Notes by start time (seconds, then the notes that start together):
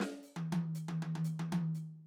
0.00 snare
0.23 hi-hat pedal
0.36 closed hi-hat, high tom
0.52 high tom
0.75 hi-hat pedal
0.88 closed hi-hat, high tom
1.02 high tom
1.15 high tom
1.24 hi-hat pedal
1.39 high tom
1.52 high tom
1.75 hi-hat pedal